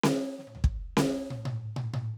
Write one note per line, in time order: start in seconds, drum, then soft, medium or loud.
0.03 snare loud
0.38 snare soft
0.47 high tom medium
0.55 floor tom medium
0.64 kick loud
0.97 snare loud
1.30 high tom loud
1.45 high tom loud
1.76 high tom loud
1.94 high tom loud